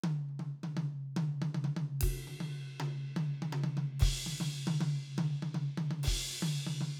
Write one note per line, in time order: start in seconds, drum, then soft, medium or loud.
0.03 high tom loud
0.29 high tom soft
0.39 high tom medium
0.63 high tom medium
0.77 high tom loud
1.16 high tom loud
1.42 high tom loud
1.54 high tom loud
1.64 high tom medium
1.76 high tom loud
2.01 kick medium
2.01 ride loud
2.27 high tom medium
2.40 high tom medium
2.67 high tom soft
2.80 high tom medium
3.16 high tom loud
3.42 high tom loud
3.52 high tom medium
3.63 high tom loud
3.77 high tom medium
3.99 kick medium
3.99 ride loud
4.26 high tom medium
4.40 high tom loud
4.67 high tom loud
4.81 high tom loud
5.18 high tom loud
5.42 high tom medium
5.54 high tom loud
5.77 high tom loud
5.91 high tom medium
6.03 ride loud
6.07 kick medium
6.42 high tom loud
6.66 high tom medium
6.81 high tom medium